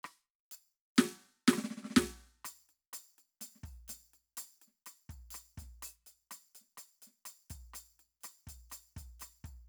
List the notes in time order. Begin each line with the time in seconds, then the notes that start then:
0.04 cross-stick, percussion
0.52 percussion
0.96 snare, percussion
1.48 snare, percussion
1.53 cross-stick
1.58 snare
1.64 snare
1.71 snare
1.77 snare
1.83 snare
1.85 snare
1.91 snare
1.97 kick, snare
2.45 cross-stick, percussion
2.69 percussion
2.93 cross-stick, percussion
3.19 percussion
3.41 snare, percussion
3.56 snare
3.64 kick, percussion
3.88 snare, percussion
4.14 percussion
4.37 cross-stick, percussion
4.62 percussion
4.68 snare
4.86 cross-stick, percussion
5.10 kick, snare, percussion
5.31 cross-stick, percussion
5.35 percussion
5.58 kick, snare, percussion
5.83 cross-stick, percussion
6.07 percussion
6.31 cross-stick, snare, percussion
6.55 percussion
6.61 snare
6.78 cross-stick, percussion
7.02 percussion
7.07 snare
7.26 cross-stick, percussion
7.50 kick, percussion
7.74 cross-stick, snare, percussion
8.00 percussion
8.21 percussion
8.24 cross-stick, percussion
8.47 kick, percussion
8.70 cross-stick, percussion
8.72 percussion
8.97 kick, percussion
9.01 snare
9.20 cross-stick, percussion
9.44 kick, percussion